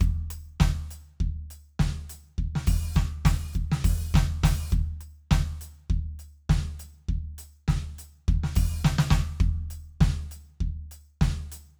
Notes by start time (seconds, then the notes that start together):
0.01 kick, percussion
0.31 percussion
0.60 kick, snare
0.91 percussion
1.21 kick
1.51 percussion
1.80 kick, snare
2.10 percussion
2.38 kick
2.56 snare
2.67 kick, percussion
2.95 kick, snare, percussion
3.25 kick, snare, percussion
3.54 kick, percussion
3.72 snare
3.85 kick, percussion
4.14 kick, snare, percussion
4.44 kick, snare, percussion
4.71 kick, percussion
5.01 percussion
5.31 kick, snare
5.61 percussion
5.90 kick
6.19 percussion
6.50 kick, snare
6.80 percussion
7.09 kick
7.39 percussion
7.68 kick, snare
7.99 percussion
8.28 kick
8.44 snare
8.56 kick, percussion
8.81 percussion
8.85 kick, snare
8.99 snare
9.11 kick, snare
9.40 kick
9.71 percussion
10.01 kick, snare
10.32 percussion
10.61 kick
10.92 percussion
11.21 kick, snare
11.52 percussion